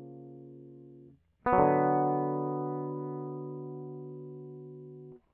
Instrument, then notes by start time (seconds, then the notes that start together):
electric guitar
1.47 B3
1.53 F#3
1.59 D3
1.64 A2